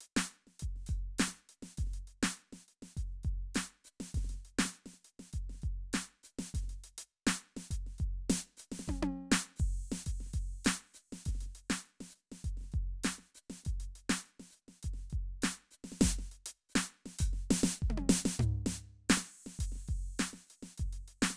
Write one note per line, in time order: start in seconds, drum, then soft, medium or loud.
0.01 closed hi-hat medium
0.16 snare loud
0.31 closed hi-hat soft
0.47 snare soft
0.59 closed hi-hat medium
0.59 kick soft
0.76 snare soft
0.82 snare soft
0.86 open hi-hat soft
0.86 kick soft
0.95 kick soft
1.18 closed hi-hat medium
1.18 snare loud
1.28 snare soft
1.49 closed hi-hat soft
1.62 snare soft
1.77 closed hi-hat medium
1.77 kick soft
1.77 snare soft
1.83 snare soft
1.87 kick soft
1.87 snare soft
1.91 closed hi-hat soft
1.91 snare soft
2.07 closed hi-hat soft
2.23 snare medium
2.37 closed hi-hat soft
2.52 snare soft
2.60 hi-hat pedal soft
2.68 closed hi-hat soft
2.82 snare soft
2.97 closed hi-hat soft
2.97 kick soft
3.04 snare soft
3.23 kick soft
3.23 closed hi-hat soft
3.33 kick soft
3.55 closed hi-hat medium
3.55 snare medium
3.84 hi-hat pedal medium
4.00 snare soft
4.14 closed hi-hat medium
4.14 kick soft
4.14 snare soft
4.23 kick soft
4.23 snare soft
4.29 closed hi-hat soft
4.29 snare soft
4.34 snare soft
4.45 closed hi-hat soft
4.59 snare loud
4.65 snare soft
4.74 closed hi-hat soft
4.86 snare soft
4.93 snare soft
5.04 closed hi-hat soft
5.19 snare soft
5.33 closed hi-hat medium
5.33 kick soft
5.49 snare soft
5.54 snare soft
5.62 closed hi-hat soft
5.62 kick soft
5.93 closed hi-hat medium
5.93 snare medium
6.23 closed hi-hat soft
6.23 hi-hat pedal medium
6.39 snare medium
6.54 closed hi-hat medium
6.54 kick soft
6.54 snare soft
6.62 kick soft
6.62 snare soft
6.67 closed hi-hat soft
6.67 snare soft
6.70 snare soft
6.73 snare soft
6.84 closed hi-hat medium
6.98 closed hi-hat loud
7.27 snare loud
7.56 snare soft
7.61 hi-hat pedal medium
7.71 kick soft
7.71 closed hi-hat medium
7.86 snare soft
7.98 kick soft
7.98 closed hi-hat soft
8.09 kick soft
8.30 closed hi-hat loud
8.30 snare loud
8.57 closed hi-hat medium
8.57 hi-hat pedal medium
8.72 snare soft
8.79 snare soft
8.87 kick soft
8.87 snare soft
8.87 high tom medium
9.02 high tom loud
9.32 snare loud
9.56 kick medium
9.56 hi-hat pedal medium
9.56 crash medium
9.92 snare medium
10.06 closed hi-hat medium
10.06 kick soft
10.20 snare soft
10.26 snare soft
10.33 closed hi-hat medium
10.33 kick soft
10.33 snare soft
10.65 closed hi-hat medium
10.65 snare loud
10.94 closed hi-hat soft
10.94 hi-hat pedal medium
11.12 snare soft
11.25 closed hi-hat medium
11.25 kick soft
11.25 snare soft
11.35 kick soft
11.35 snare soft
11.40 closed hi-hat medium
11.40 snare soft
11.46 snare soft
11.55 closed hi-hat medium
11.70 snare medium
11.85 closed hi-hat soft
12.00 snare soft
12.09 hi-hat pedal medium
12.15 closed hi-hat soft
12.32 snare soft
12.44 closed hi-hat soft
12.44 kick soft
12.57 snare soft
12.61 snare soft
12.64 snare soft
12.72 kick soft
12.72 closed hi-hat soft
12.83 kick soft
13.04 closed hi-hat loud
13.04 snare medium
13.18 snare soft
13.35 hi-hat pedal medium
13.50 snare soft
13.63 closed hi-hat medium
13.63 kick soft
13.63 snare soft
13.75 kick soft
13.80 closed hi-hat medium
13.95 closed hi-hat medium
14.09 snare medium
14.25 closed hi-hat soft
14.39 snare soft
14.50 hi-hat pedal medium
14.54 closed hi-hat soft
14.68 snare soft
14.83 closed hi-hat medium
14.83 kick soft
14.93 snare soft
14.99 snare soft
15.10 kick soft
15.10 closed hi-hat soft
15.42 closed hi-hat medium
15.42 snare medium
15.71 hi-hat pedal medium
15.84 snare soft
15.92 snare soft
16.00 kick soft
16.00 snare soft
16.00 snare loud
16.09 kick soft
16.18 snare soft
16.31 closed hi-hat medium
16.46 closed hi-hat loud
16.69 hi-hat pedal medium
16.75 snare loud
17.06 snare soft
17.18 open hi-hat loud
17.18 kick medium
17.18 hi-hat pedal soft
17.27 kick soft
17.30 kick soft
17.30 snare soft
17.50 snare loud
17.63 snare loud
17.74 hi-hat pedal medium
17.82 kick medium
17.88 kick soft
17.88 mid tom medium
17.91 kick soft
17.97 closed hi-hat soft
17.97 high tom medium
18.09 snare loud
18.25 snare medium
18.39 hi-hat pedal medium
18.39 floor tom loud
18.66 snare medium
18.76 hi-hat pedal soft
19.09 snare loud
19.09 crash medium
19.17 snare soft
19.46 snare soft
19.56 kick soft
19.56 hi-hat pedal soft
19.60 closed hi-hat medium
19.72 snare soft
19.75 snare soft
19.88 kick soft
19.88 closed hi-hat soft
19.95 kick soft
20.19 closed hi-hat medium
20.19 snare medium
20.33 snare soft
20.46 hi-hat pedal soft
20.50 closed hi-hat soft
20.62 snare soft
20.78 closed hi-hat medium
20.78 kick soft
20.85 kick soft
20.93 closed hi-hat soft
21.08 closed hi-hat medium
21.22 snare loud
21.30 snare soft